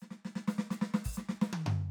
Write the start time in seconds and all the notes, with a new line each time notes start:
0.01 snare, hi-hat pedal
0.11 snare
0.25 snare
0.36 snare
0.48 snare, hi-hat pedal
0.59 snare
0.71 snare, hi-hat pedal
0.82 snare
0.94 snare
1.05 open hi-hat, kick
1.14 hi-hat pedal
1.18 snare
1.29 snare
1.42 snare
1.53 high tom
1.67 floor tom